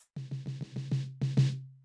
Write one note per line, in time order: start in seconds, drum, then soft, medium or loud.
0.00 hi-hat pedal medium
0.16 snare soft
0.16 floor tom medium
0.31 snare soft
0.31 floor tom medium
0.46 snare medium
0.46 floor tom medium
0.61 snare medium
0.61 floor tom medium
0.76 snare medium
0.76 floor tom medium
0.91 snare medium
0.91 floor tom medium
1.21 snare medium
1.21 floor tom loud
1.37 snare loud
1.37 floor tom loud